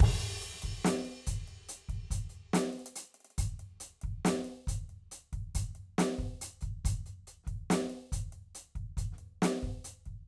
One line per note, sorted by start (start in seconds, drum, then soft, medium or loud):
0.01 kick loud
0.01 crash loud
0.21 closed hi-hat soft
0.42 closed hi-hat medium
0.54 snare soft
0.63 kick medium
0.63 closed hi-hat medium
0.85 closed hi-hat loud
0.85 snare loud
1.06 closed hi-hat soft
1.28 closed hi-hat loud
1.28 kick medium
1.48 closed hi-hat soft
1.70 closed hi-hat loud
1.89 kick medium
1.89 closed hi-hat soft
2.11 closed hi-hat loud
2.11 kick medium
2.30 closed hi-hat soft
2.54 closed hi-hat loud
2.54 snare loud
2.74 closed hi-hat soft
2.80 closed hi-hat soft
2.87 closed hi-hat medium
2.97 closed hi-hat loud
3.15 closed hi-hat soft
3.21 closed hi-hat soft
3.25 closed hi-hat soft
3.31 closed hi-hat soft
3.39 closed hi-hat loud
3.39 kick medium
3.60 closed hi-hat soft
3.81 closed hi-hat loud
4.02 kick medium
4.02 closed hi-hat soft
4.26 closed hi-hat loud
4.26 snare loud
4.45 closed hi-hat soft
4.68 closed hi-hat loud
4.68 kick medium
4.90 closed hi-hat soft
5.12 closed hi-hat medium
5.33 kick soft
5.33 closed hi-hat soft
5.56 closed hi-hat loud
5.56 kick medium
5.76 closed hi-hat soft
5.99 closed hi-hat loud
5.99 snare loud
6.19 kick medium
6.19 closed hi-hat soft
6.42 closed hi-hat loud
6.62 closed hi-hat soft
6.62 kick medium
6.86 closed hi-hat loud
6.86 kick medium
7.07 closed hi-hat soft
7.28 closed hi-hat medium
7.45 kick medium
7.45 snare soft
7.45 closed hi-hat soft
7.71 closed hi-hat loud
7.71 snare loud
7.90 closed hi-hat soft
8.13 closed hi-hat loud
8.13 kick medium
8.33 closed hi-hat soft
8.56 closed hi-hat loud
8.76 kick soft
8.76 closed hi-hat soft
8.98 closed hi-hat medium
8.98 kick medium
9.13 snare soft
9.19 closed hi-hat soft
9.43 closed hi-hat loud
9.43 snare loud
9.63 kick medium
9.63 closed hi-hat soft
9.85 closed hi-hat loud
10.06 kick soft
10.06 closed hi-hat soft